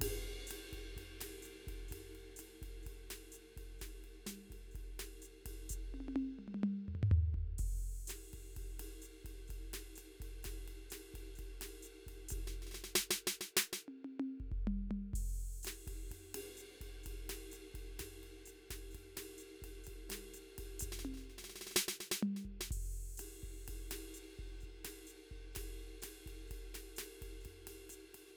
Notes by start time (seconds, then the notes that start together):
0.01 kick, ride
0.06 kick
0.47 snare, hi-hat pedal, ride
0.73 kick, ride
0.97 kick, ride
1.21 snare, ride
1.43 hi-hat pedal, ride
1.68 kick, ride
1.73 kick
1.89 kick, hi-hat pedal
1.93 kick, ride
2.15 ride
2.37 snare, hi-hat pedal, ride
2.62 kick, ride
2.83 kick, hi-hat pedal, ride
3.11 snare, ride
3.32 hi-hat pedal, ride
3.57 kick, ride
3.79 kick, snare, hi-hat pedal, ride
4.04 ride
4.13 snare
4.27 snare, hi-hat pedal, mid tom, ride
4.50 kick, ride
4.71 kick, hi-hat pedal
4.76 ride
4.80 kick, snare
4.99 snare, ride
5.22 hi-hat pedal, ride
5.46 kick, ride
5.70 kick, hi-hat pedal
5.76 kick
5.94 high tom
6.01 high tom
6.09 high tom
6.16 high tom
6.39 mid tom
6.48 mid tom
6.55 mid tom
6.64 mid tom
6.88 floor tom
6.95 floor tom
7.03 floor tom
7.12 floor tom
7.35 kick
7.40 kick
7.59 kick, crash
8.08 snare, hi-hat pedal, ride
8.33 kick, ride
8.53 kick, hi-hat pedal, ride
8.62 kick
8.80 snare, ride
9.02 hi-hat pedal, ride
9.25 kick, ride
9.48 kick, hi-hat pedal, ride
9.73 snare, ride
9.96 hi-hat pedal, ride
10.20 kick, ride
10.43 kick, snare, hi-hat pedal, ride
10.68 ride
10.90 snare, hi-hat pedal, ride
11.14 kick, ride
11.36 kick, hi-hat pedal, ride
11.61 snare, ride
11.83 hi-hat pedal, ride
12.07 kick, ride
12.29 kick, hi-hat pedal, ride
12.38 kick
12.47 snare
12.62 snare
12.67 snare
12.71 snare
12.75 snare
12.84 snare
12.96 snare
13.11 snare
13.27 snare
13.41 snare
13.57 snare
13.61 snare
13.73 snare
13.88 high tom
14.05 high tom
14.20 high tom
14.40 kick
14.52 kick
14.67 mid tom
14.91 mid tom
15.14 kick, crash
15.23 kick
15.63 snare, hi-hat pedal, ride
15.67 snare
15.87 kick, ride
15.92 kick
16.09 kick, hi-hat pedal, ride
16.34 snare, ride
16.57 hi-hat pedal, ride
16.81 kick, ride
17.04 kick, hi-hat pedal, ride
17.29 snare, ride
17.52 hi-hat pedal, ride
17.75 kick, ride
17.99 kick, snare, hi-hat pedal, ride
18.23 ride
18.46 hi-hat pedal, ride
18.71 kick, snare, ride
18.91 kick, hi-hat pedal, ride
19.17 snare, ride
19.38 hi-hat pedal, ride
19.62 kick, ride
19.84 hi-hat pedal, ride
19.88 kick
20.10 snare, mid tom, ride
20.12 snare
20.34 hi-hat pedal, ride
20.58 kick, ride
20.80 kick, hi-hat pedal, ride
20.92 snare
20.99 snare
21.05 high tom
21.14 snare
21.18 snare
21.21 snare
21.30 snare
21.38 snare
21.44 snare
21.50 snare
21.56 snare
21.61 snare
21.67 snare
21.71 snare
21.76 snare
21.88 snare
22.01 snare
22.12 snare
22.23 mid tom
22.37 snare
22.45 kick
22.61 snare
22.71 kick, crash
22.77 kick
23.18 hi-hat pedal, ride
23.44 kick
23.68 kick, ride
23.91 snare, ride
24.14 hi-hat pedal
24.38 kick, ride
24.61 kick, hi-hat pedal, ride
24.84 snare, ride
25.07 hi-hat pedal
25.31 kick
25.53 kick, snare, hi-hat pedal, ride
26.02 snare, hi-hat pedal, ride
26.26 kick, ride
26.48 kick, hi-hat pedal, ride
26.74 snare, ride
26.97 snare, hi-hat pedal, ride
27.22 kick, ride
27.41 hi-hat pedal, ride
27.46 kick
27.67 snare, ride
27.90 hi-hat pedal, ride
28.15 ride
28.28 snare